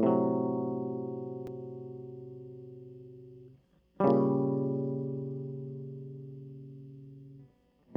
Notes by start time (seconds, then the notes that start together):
0.00 A2 C3
0.07 F#3
4.01 G3
4.05 A#2 C#3